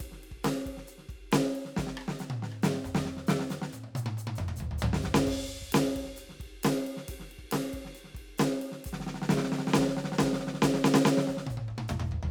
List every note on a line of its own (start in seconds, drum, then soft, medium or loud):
0.01 kick soft
0.01 hi-hat pedal medium
0.01 ride medium
0.08 kick soft
0.13 snare soft
0.20 snare soft
0.24 ride soft
0.32 kick soft
0.38 kick soft
0.44 snare loud
0.44 hi-hat pedal medium
0.44 ride loud
0.67 kick soft
0.67 ride medium
0.73 kick soft
0.78 snare soft
0.88 hi-hat pedal medium
0.88 ride medium
0.99 snare soft
1.10 kick soft
1.10 ride bell soft
1.16 kick soft
1.32 snare loud
1.32 hi-hat pedal medium
1.32 ride medium
1.56 ride medium
1.66 snare soft
1.77 kick soft
1.77 snare loud
1.77 hi-hat pedal soft
1.85 kick soft
1.85 snare medium
1.98 cross-stick medium
2.02 cross-stick medium
2.09 snare medium
2.20 snare medium
2.20 hi-hat pedal medium
2.31 high tom loud
2.43 snare medium
2.53 cross-stick soft
2.63 snare loud
2.63 hi-hat pedal medium
2.85 kick soft
2.85 hi-hat pedal medium
2.85 mid tom medium
2.96 snare loud
3.06 snare medium
3.18 snare soft
3.28 snare loud
3.28 hi-hat pedal medium
3.40 snare medium
3.51 snare medium
3.51 hi-hat pedal medium
3.63 snare medium
3.73 hi-hat pedal medium
3.73 high tom medium
3.85 high tom medium
3.96 hi-hat pedal medium
3.96 high tom loud
4.07 high tom loud
4.18 hi-hat pedal medium
4.18 high tom medium
4.28 high tom loud
4.36 kick soft
4.36 hi-hat pedal medium
4.36 mid tom loud
4.44 kick soft
4.49 mid tom medium
4.57 kick soft
4.57 hi-hat pedal medium
4.61 floor tom medium
4.72 floor tom medium
4.79 hi-hat pedal medium
4.79 floor tom loud
4.83 kick soft
4.94 snare loud
5.03 kick soft
5.03 snare medium
5.03 hi-hat pedal medium
5.14 kick soft
5.14 snare loud
5.28 kick medium
5.28 ride loud
5.38 kick soft
5.38 cross-stick soft
5.47 hi-hat pedal medium
5.63 kick soft
5.73 snare loud
5.73 hi-hat pedal medium
5.73 ride loud
5.97 kick soft
5.97 ride medium
6.03 kick soft
6.03 snare soft
6.17 hi-hat pedal medium
6.17 ride medium
6.30 snare soft
6.41 kick soft
6.41 ride medium
6.47 kick soft
6.64 snare loud
6.64 hi-hat pedal medium
6.64 ride loud
6.87 ride medium
6.98 snare soft
7.09 kick soft
7.09 hi-hat pedal medium
7.09 ride loud
7.16 kick soft
7.20 snare soft
7.32 ride soft
7.39 kick soft
7.45 kick soft
7.52 snare medium
7.52 hi-hat pedal medium
7.52 ride loud
7.74 kick soft
7.74 ride medium
7.80 kick soft
7.86 snare soft
7.96 hi-hat pedal soft
7.96 ride medium
8.05 snare soft
8.10 snare soft
8.15 kick soft
8.15 ride medium
8.39 snare loud
8.39 hi-hat pedal medium
8.39 ride medium
8.62 ride medium
8.73 snare soft
8.85 kick soft
8.85 hi-hat pedal medium
8.85 ride medium
8.93 kick soft
8.93 snare medium
9.01 snare medium
9.08 snare medium
9.15 snare medium
9.23 snare medium
9.30 kick soft
9.30 snare loud
9.30 hi-hat pedal soft
9.38 snare medium
9.45 snare medium
9.53 snare medium
9.60 snare medium
9.68 snare medium
9.74 snare loud
9.74 hi-hat pedal soft
9.79 kick soft
9.79 snare medium
9.89 snare medium
9.98 snare medium
10.05 snare medium
10.13 snare medium
10.19 kick soft
10.19 snare loud
10.19 hi-hat pedal soft
10.27 snare medium
10.34 snare medium
10.40 snare medium
10.48 snare medium
10.55 snare medium
10.63 kick soft
10.63 snare loud
10.63 hi-hat pedal soft
10.75 snare medium
10.85 snare loud
10.95 snare loud
11.06 snare loud
11.06 hi-hat pedal medium
11.18 snare loud
11.29 kick soft
11.29 hi-hat pedal soft
11.38 snare medium
11.48 kick soft
11.48 hi-hat pedal soft
11.48 high tom loud
11.56 kick soft
11.56 high tom medium
11.69 kick soft
11.69 high tom medium
11.79 high tom loud
11.89 kick soft
11.89 hi-hat pedal medium
11.89 mid tom loud
11.98 kick soft
11.98 mid tom medium
12.07 hi-hat pedal soft
12.12 kick soft
12.12 floor tom medium
12.24 floor tom loud